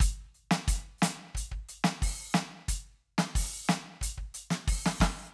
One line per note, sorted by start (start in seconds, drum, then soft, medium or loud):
0.01 closed hi-hat loud
0.01 kick loud
0.35 closed hi-hat soft
0.52 snare loud
0.68 closed hi-hat loud
0.68 kick loud
0.99 snare loud
0.99 hi-hat pedal soft
1.03 closed hi-hat loud
1.35 closed hi-hat loud
1.35 kick medium
1.52 kick medium
1.69 closed hi-hat medium
1.85 snare loud
2.03 open hi-hat loud
2.03 kick loud
2.34 snare loud
2.34 hi-hat pedal soft
2.69 closed hi-hat loud
2.69 kick medium
2.69 snare soft
3.19 snare loud
3.36 open hi-hat loud
3.36 kick loud
3.68 closed hi-hat medium
3.68 snare loud
3.68 hi-hat pedal soft
4.02 closed hi-hat loud
4.02 kick medium
4.18 kick medium
4.35 closed hi-hat medium
4.51 snare loud
4.68 open hi-hat loud
4.68 kick loud
4.86 snare loud
5.01 kick loud
5.01 snare loud
5.28 hi-hat pedal soft